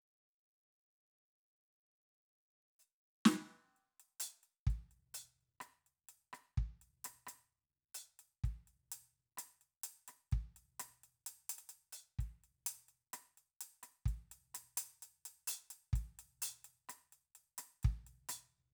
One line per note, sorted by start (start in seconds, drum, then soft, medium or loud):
2.79 hi-hat pedal soft
3.25 snare loud
3.34 snare soft
3.76 closed hi-hat soft
4.00 closed hi-hat soft
4.20 closed hi-hat loud
4.43 closed hi-hat soft
4.67 kick medium
4.67 closed hi-hat soft
4.91 closed hi-hat soft
5.14 closed hi-hat medium
5.41 closed hi-hat soft
5.60 cross-stick medium
5.60 closed hi-hat soft
5.86 closed hi-hat soft
6.09 closed hi-hat soft
6.33 cross-stick medium
6.33 closed hi-hat soft
6.57 kick medium
6.81 closed hi-hat soft
7.04 cross-stick soft
7.04 closed hi-hat medium
7.27 cross-stick medium
7.27 closed hi-hat medium
7.95 closed hi-hat medium
8.19 closed hi-hat soft
8.44 kick medium
8.44 closed hi-hat soft
8.67 closed hi-hat soft
8.92 closed hi-hat medium
9.38 cross-stick medium
9.38 closed hi-hat medium
9.61 closed hi-hat soft
9.84 closed hi-hat medium
10.08 cross-stick soft
10.08 closed hi-hat soft
10.32 kick medium
10.32 closed hi-hat soft
10.56 closed hi-hat soft
10.80 cross-stick medium
10.80 closed hi-hat medium
11.04 closed hi-hat soft
11.26 closed hi-hat medium
11.49 closed hi-hat medium
11.58 closed hi-hat soft
11.69 closed hi-hat medium
11.93 closed hi-hat medium
12.19 kick soft
12.19 closed hi-hat soft
12.44 closed hi-hat soft
12.66 closed hi-hat loud
12.88 closed hi-hat soft
13.13 cross-stick medium
13.13 closed hi-hat medium
13.38 closed hi-hat soft
13.61 closed hi-hat medium
13.83 cross-stick soft
13.83 closed hi-hat soft
14.06 kick medium
14.06 closed hi-hat soft
14.31 closed hi-hat soft
14.54 cross-stick soft
14.54 closed hi-hat medium
14.77 cross-stick soft
14.77 closed hi-hat loud
15.02 closed hi-hat medium
15.25 closed hi-hat medium
15.47 closed hi-hat loud
15.70 closed hi-hat medium
15.93 kick medium
15.93 closed hi-hat soft
16.19 closed hi-hat soft
16.42 closed hi-hat loud
16.64 closed hi-hat soft
16.89 cross-stick medium
16.89 closed hi-hat medium
17.12 closed hi-hat soft
17.35 closed hi-hat soft
17.58 cross-stick soft
17.58 closed hi-hat medium
17.83 kick medium
17.83 closed hi-hat soft
18.07 closed hi-hat soft
18.29 closed hi-hat loud
18.29 cross-stick medium